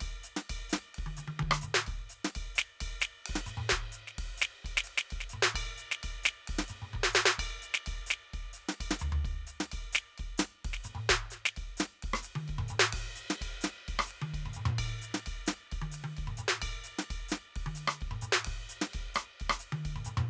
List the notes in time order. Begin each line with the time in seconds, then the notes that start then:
0.01 kick, ride bell
0.24 hi-hat pedal
0.37 snare
0.50 kick, ride bell
0.70 snare, hi-hat pedal
0.95 kick, ride
1.07 high tom
1.17 hi-hat pedal, high tom
1.28 high tom
1.40 kick, high tom
1.48 kick, cross-stick
1.62 hi-hat pedal, mid tom
1.75 snare
1.87 kick, ride bell
1.94 kick
2.10 hi-hat pedal, ride
2.25 snare
2.35 kick, ride bell
2.43 kick
2.56 snare, hi-hat pedal
2.81 kick, ride bell
3.01 snare, hi-hat pedal
3.26 kick, ride
3.36 snare
3.47 hi-hat pedal, mid tom
3.57 mid tom
3.70 kick, snare
3.78 kick
3.92 hi-hat pedal
4.08 snare
4.19 kick, ride
4.38 hi-hat pedal
4.42 snare
4.65 kick, ride bell
4.78 snare
4.84 hi-hat pedal, ride
4.98 snare
5.11 kick, ride bell
5.19 kick, snare
5.30 hi-hat pedal
5.34 mid tom
5.43 snare
5.55 kick, ride bell
5.60 kick
5.77 hi-hat pedal, ride
5.92 snare
6.03 kick, ride bell
6.24 snare, hi-hat pedal
6.48 kick, ride
6.55 kick, snare
6.68 hi-hat pedal, mid tom
6.82 mid tom
6.94 kick, mid tom
7.04 snare
7.14 snare, hi-hat pedal
7.26 snare
7.39 kick, ride bell
7.60 hi-hat pedal, ride
7.75 snare
7.87 kick, ride bell
7.94 kick
8.07 snare, hi-hat pedal
8.34 kick, ride bell
8.53 hi-hat pedal
8.58 ride
8.69 snare
8.81 kick, ride bell
8.91 snare
9.00 floor tom, hi-hat pedal
9.13 floor tom
9.25 kick, ride bell
9.31 kick
9.35 kick
9.47 hi-hat pedal, ride
9.61 snare
9.72 kick, ride bell
9.93 snare, hi-hat pedal
10.18 kick, ride bell
10.38 snare, hi-hat pedal
10.65 kick, ride
10.73 kick, snare
10.84 hi-hat pedal, mid tom
11.10 kick, snare
11.31 snare, hi-hat pedal
11.46 snare
11.57 kick, ride bell
11.77 snare, hi-hat pedal
12.03 kick, ride
12.14 cross-stick
12.23 hi-hat pedal, ride
12.36 high tom
12.48 kick, ride bell
12.59 mid tom
12.69 hi-hat pedal, mid tom
12.80 snare
12.93 kick, ride
13.16 hi-hat pedal
13.30 snare
13.42 kick, ride bell
13.61 snare, hi-hat pedal
13.88 kick, ride bell
13.95 kick
13.99 cross-stick
14.07 hi-hat pedal
14.11 ride
14.22 high tom
14.34 kick, ride bell
14.40 kick
14.46 mid tom
14.54 hi-hat pedal, mid tom
14.66 mid tom
14.79 kick, ride bell
14.84 kick
14.99 hi-hat pedal, ride
15.15 snare
15.26 kick, ride bell
15.47 snare, hi-hat pedal
15.72 kick, ride bell
15.82 high tom
15.92 hi-hat pedal, ride
16.04 high tom
16.17 kick, ride bell
16.24 kick, mid tom
16.37 hi-hat pedal, mid tom
16.48 snare
16.55 snare
16.62 kick, ride bell
16.68 kick
16.84 hi-hat pedal, ride
16.99 snare
17.11 kick, ride bell
17.18 kick
17.29 snare, hi-hat pedal
17.56 kick, ride
17.66 high tom
17.75 hi-hat pedal, ride
17.88 cross-stick
18.01 kick, ride bell
18.08 kick, mid tom
18.22 hi-hat pedal, mid tom
18.33 snare
18.41 mid tom, ride
18.47 kick
18.66 hi-hat pedal, ride
18.82 snare
18.94 kick, ride bell
19.01 kick
19.15 cross-stick, hi-hat pedal
19.40 kick, ride bell
19.47 kick, cross-stick
19.60 hi-hat pedal, ride
19.73 high tom
19.85 kick, ride bell
19.96 mid tom
20.05 hi-hat pedal, mid tom
20.18 mid tom